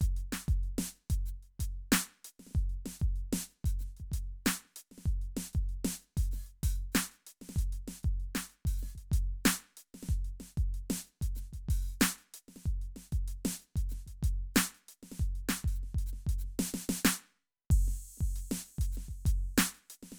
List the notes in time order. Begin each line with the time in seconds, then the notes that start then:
0.01 closed hi-hat, kick
0.17 closed hi-hat
0.32 snare
0.48 kick, closed hi-hat
0.63 closed hi-hat
0.78 snare
0.93 closed hi-hat
1.10 open hi-hat, kick
1.26 hi-hat pedal
1.43 closed hi-hat
1.60 open hi-hat, kick
1.92 snare, hi-hat pedal
2.25 closed hi-hat
2.39 snare
2.47 snare
2.51 snare
2.55 kick, closed hi-hat
2.70 closed hi-hat
2.86 snare
3.00 kick, closed hi-hat
3.16 closed hi-hat
3.33 snare
3.49 closed hi-hat
3.65 open hi-hat, kick
3.79 snare, hi-hat pedal
3.97 kick, closed hi-hat
4.12 open hi-hat, kick
4.46 snare, closed hi-hat, hi-hat pedal
4.65 snare
4.76 closed hi-hat
4.91 snare
4.98 snare
5.06 kick, closed hi-hat
5.22 closed hi-hat
5.37 snare
5.53 kick, closed hi-hat
5.63 kick
5.69 closed hi-hat
5.85 snare
6.00 closed hi-hat
6.17 open hi-hat, kick
6.31 snare, hi-hat pedal
6.46 closed hi-hat
6.63 open hi-hat, kick
6.92 snare, hi-hat pedal
7.12 closed hi-hat
7.27 closed hi-hat
7.41 snare
7.49 snare
7.56 closed hi-hat, kick
7.73 closed hi-hat
7.88 snare
8.03 kick, closed hi-hat
8.20 closed hi-hat
8.35 snare
8.50 closed hi-hat
8.65 open hi-hat, kick
8.77 hi-hat pedal
8.83 snare
8.95 kick, closed hi-hat
9.12 open hi-hat, kick
9.44 snare, hi-hat pedal
9.58 closed hi-hat
9.77 closed hi-hat
9.94 snare
10.03 snare
10.09 kick, closed hi-hat
10.25 closed hi-hat
10.40 snare
10.57 kick, closed hi-hat
10.74 closed hi-hat
10.90 snare
11.05 closed hi-hat
11.22 closed hi-hat, kick
11.35 snare, hi-hat pedal
11.53 kick, closed hi-hat
11.69 open hi-hat, kick
12.00 snare, hi-hat pedal
12.18 closed hi-hat
12.34 closed hi-hat
12.48 snare
12.56 snare
12.66 kick, closed hi-hat
12.82 closed hi-hat
12.96 snare
13.12 kick, closed hi-hat
13.28 closed hi-hat
13.45 snare
13.60 closed hi-hat
13.76 kick, open hi-hat
13.89 snare, hi-hat pedal
14.07 kick, closed hi-hat
14.23 open hi-hat, kick
14.55 snare, hi-hat pedal
14.75 closed hi-hat
14.89 closed hi-hat
15.03 snare
15.12 snare
15.20 kick, closed hi-hat
15.35 closed hi-hat
15.49 snare
15.64 kick, open hi-hat
15.74 hi-hat pedal
15.83 snare
15.95 open hi-hat, kick
16.06 hi-hat pedal
16.13 snare
16.27 open hi-hat, kick
16.39 hi-hat pedal
16.44 snare
16.59 snare
16.74 snare
16.89 snare
17.05 snare
17.71 kick, crash
17.88 snare
18.02 closed hi-hat
18.17 kick, snare
18.36 closed hi-hat
18.51 snare
18.66 closed hi-hat
18.79 open hi-hat, kick
18.92 hi-hat pedal
18.97 snare
19.09 kick, closed hi-hat
19.26 open hi-hat, kick
19.57 snare, hi-hat pedal
19.75 closed hi-hat
19.90 closed hi-hat
20.03 snare
20.12 snare